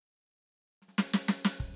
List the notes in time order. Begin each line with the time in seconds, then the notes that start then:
0.82 snare
0.88 snare, hi-hat pedal
0.98 snare
1.14 snare
1.28 snare
1.45 snare
1.60 open hi-hat, kick